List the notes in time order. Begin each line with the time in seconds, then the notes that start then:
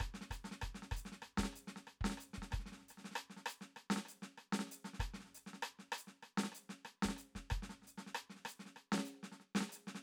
0.01 kick, cross-stick
0.15 snare
0.22 snare
0.28 kick, cross-stick, snare
0.33 hi-hat pedal
0.45 snare
0.52 snare
0.62 kick, cross-stick
0.75 snare
0.83 snare
0.92 kick, cross-stick
0.97 hi-hat pedal
1.06 snare
1.13 snare
1.23 cross-stick
1.38 kick, snare
1.44 snare
1.54 cross-stick, hi-hat pedal
1.68 snare
1.77 snare
1.88 cross-stick
2.02 kick, snare
2.07 kick, snare
2.18 cross-stick, hi-hat pedal
2.24 cross-stick
2.34 snare
2.38 kick
2.43 snare
2.51 kick, cross-stick, snare
2.60 snare
2.67 snare
2.73 snare
2.78 snare
2.82 snare
2.89 cross-stick, hi-hat pedal
2.98 snare
3.05 snare
3.12 snare
3.16 cross-stick
3.31 snare
3.37 snare
3.47 cross-stick, hi-hat pedal
3.62 snare
3.77 cross-stick
3.91 snare
3.97 snare
4.06 cross-stick, hi-hat pedal
4.13 cross-stick
4.23 snare
4.38 cross-stick
4.53 snare
4.60 snare
4.68 snare
4.72 snare, hi-hat pedal
4.85 snare
4.94 snare
5.00 kick, cross-stick
5.14 snare
5.20 snare
5.25 snare
5.31 snare
5.35 cross-stick, hi-hat pedal
5.47 snare
5.54 snare
5.63 cross-stick
5.80 snare
5.93 cross-stick
5.99 hi-hat pedal
6.08 snare
6.23 cross-stick
6.38 snare
6.44 snare
6.53 cross-stick, hi-hat pedal
6.58 cross-stick
6.70 snare
6.86 cross-stick
7.03 kick, snare
7.09 snare
7.17 cross-stick, hi-hat pedal
7.36 kick, snare
7.51 kick, cross-stick
7.63 snare
7.70 snare
7.83 snare
7.88 hi-hat pedal
7.98 snare
8.07 snare
8.15 cross-stick
8.30 snare
8.36 snare
8.41 snare
8.46 cross-stick, hi-hat pedal
8.60 snare
8.66 snare
8.77 cross-stick
8.93 snare
8.99 snare
9.06 cross-stick, hi-hat pedal
9.15 cross-stick
9.24 snare
9.32 snare
9.41 snare
9.56 snare
9.61 snare
9.68 cross-stick, snare
9.73 cross-stick, hi-hat pedal
9.88 snare
9.95 snare